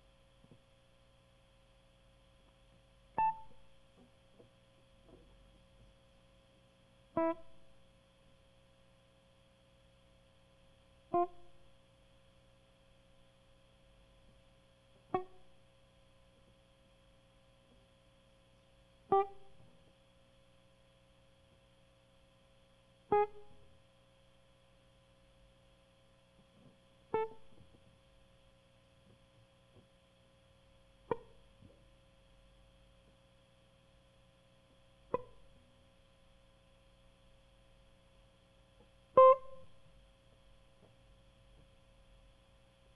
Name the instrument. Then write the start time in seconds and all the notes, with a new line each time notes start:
electric guitar
3.19 A5
7.17 E4
11.14 F4
15.15 F#4
19.12 G4
23.12 G#4
27.14 A4
31.12 A#4
35.14 B4
39.18 C5